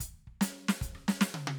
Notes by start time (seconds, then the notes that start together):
0.00 closed hi-hat, kick
0.27 kick
0.41 closed hi-hat, snare
0.68 snare
0.81 closed hi-hat, kick
0.95 cross-stick
1.08 snare
1.21 snare
1.34 high tom
1.47 high tom